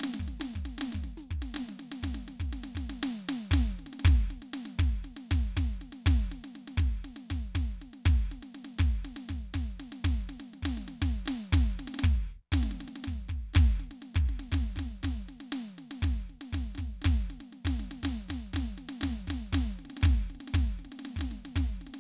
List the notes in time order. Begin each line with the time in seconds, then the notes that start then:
0.01 snare
0.04 snare
0.14 snare
0.20 kick
0.28 snare
0.40 snare
0.54 kick, snare
0.66 snare
0.79 snare
0.82 snare
0.93 kick, snare
1.04 snare
1.18 snare
1.31 kick, snare
1.43 snare
1.55 snare
1.57 snare
1.69 snare
1.80 snare
1.92 snare
2.03 kick, snare
2.15 snare
2.28 snare
2.40 kick, snare
2.53 snare
2.64 snare
2.76 kick, snare
2.90 snare
3.03 snare
3.29 snare
3.52 kick, snare
3.54 snare
3.79 snare
3.87 snare
3.93 snare
4.00 snare
4.05 kick, snare
4.31 snare
4.42 snare
4.54 snare
4.66 snare
4.79 kick, snare
5.05 snare
5.17 snare
5.31 kick, snare
5.57 kick, snare
5.82 snare
5.93 snare
6.07 kick, snare
6.32 snare
6.44 snare
6.56 snare
6.68 snare
6.78 kick, snare
7.05 snare
7.17 snare
7.31 kick, snare
7.56 kick, snare
7.82 snare
7.94 snare
8.06 kick, snare
8.32 snare
8.43 snare
8.55 snare
8.79 kick, snare
9.05 snare
9.17 snare
9.29 kick, snare
9.54 kick, snare
9.80 snare
9.93 snare
10.05 kick, snare
10.30 snare
10.40 snare
10.54 snare
10.63 kick, snare
10.78 snare
10.88 snare
11.02 kick, snare
11.26 snare
11.28 snare
11.53 kick, snare
11.80 snare
11.88 snare
11.95 snare
11.99 snare
12.04 kick
12.53 kick, snare
12.63 snare
12.72 snare
12.81 snare
12.88 snare
12.96 snare
13.04 kick, snare
13.29 kick, snare
13.54 kick, snare
13.80 snare
13.91 snare
14.03 snare
14.15 kick, snare
14.29 snare
14.40 snare
14.52 kick, snare
14.54 snare
14.76 kick, snare
14.79 snare
15.04 kick, snare
15.29 snare
15.41 snare
15.53 snare
15.79 snare
15.91 snare
16.03 kick, snare
16.30 snare
16.42 snare
16.53 kick, snare
16.76 snare
16.78 kick, snare
17.02 snare
17.05 kick, snare
17.31 snare
17.41 snare
17.53 snare
17.65 kick, snare
17.80 snare
17.92 snare
18.04 kick, snare
18.05 snare
18.29 kick, snare
18.31 snare
18.54 kick, snare
18.57 snare
18.78 snare
18.89 snare
19.02 kick, snare
19.04 snare
19.28 kick, snare
19.31 snare
19.53 kick, snare
19.79 snare
19.86 snare
19.90 snare
19.97 snare
20.02 kick, snare
20.06 snare
20.30 snare
20.35 snare
20.41 snare
20.48 snare
20.54 kick, snare
20.79 snare
20.85 snare
20.92 snare
21.00 snare
21.06 snare
21.17 kick, snare
21.21 snare
21.32 snare
21.46 snare
21.56 kick, snare
21.82 snare
21.87 snare
21.94 snare